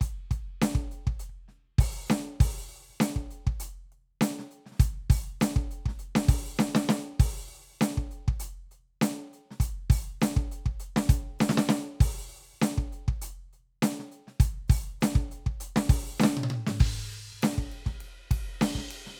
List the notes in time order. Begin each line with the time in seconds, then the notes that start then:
0.01 closed hi-hat, kick
0.31 closed hi-hat, kick
0.62 closed hi-hat, snare
0.75 kick
0.91 closed hi-hat
1.07 kick
1.20 closed hi-hat
1.29 kick
1.48 snare
1.79 open hi-hat, kick
2.08 snare, hi-hat pedal
2.40 open hi-hat, kick
2.90 kick
3.00 open hi-hat, snare, hi-hat pedal
3.16 kick
3.31 closed hi-hat
3.47 kick
3.60 closed hi-hat
3.92 closed hi-hat
4.21 closed hi-hat, snare
4.39 snare
4.51 closed hi-hat
4.66 snare
4.71 snare
4.75 snare
4.78 closed hi-hat, kick, snare
5.10 open hi-hat, kick
5.40 closed hi-hat, snare, hi-hat pedal
5.56 kick
5.71 closed hi-hat
5.86 kick, snare
5.99 closed hi-hat
6.15 snare
6.29 open hi-hat, kick
6.59 snare, hi-hat pedal
6.75 snare
6.89 snare
7.20 open hi-hat, kick
7.81 open hi-hat, snare, hi-hat pedal
7.97 kick
8.11 closed hi-hat
8.28 kick
8.40 closed hi-hat
8.71 closed hi-hat
9.02 closed hi-hat, snare
9.33 closed hi-hat
9.51 snare
9.60 closed hi-hat, kick
9.90 open hi-hat, kick
10.21 closed hi-hat, snare, hi-hat pedal
10.37 kick
10.52 closed hi-hat
10.66 kick
10.80 closed hi-hat
10.96 snare
11.09 open hi-hat, kick
11.39 snare, hi-hat pedal
11.49 snare
11.58 snare
11.69 snare
12.01 open hi-hat, kick
12.54 kick
12.62 open hi-hat, snare, hi-hat pedal
12.78 kick
12.92 closed hi-hat
13.08 kick
13.22 closed hi-hat
13.53 closed hi-hat
13.82 closed hi-hat, snare
13.99 snare
14.12 closed hi-hat
14.27 snare
14.40 closed hi-hat, kick
14.68 open hi-hat, kick, hi-hat pedal
15.01 closed hi-hat, snare, hi-hat pedal
15.15 kick
15.31 closed hi-hat
15.46 kick
15.60 closed hi-hat
15.76 snare
15.89 open hi-hat, kick
16.20 snare, hi-hat pedal
16.23 snare
16.37 high tom
16.43 high tom
16.49 hi-hat pedal, high tom
16.67 snare
16.79 kick, hi-hat pedal, crash
17.32 kick
17.41 snare, hi-hat pedal, ride
17.58 kick
17.70 hi-hat pedal, ride
17.86 kick, snare
17.99 hi-hat pedal, ride
18.31 kick, ride
18.61 snare, hi-hat pedal, ride
18.75 kick, snare
18.91 ride
19.06 snare
19.10 snare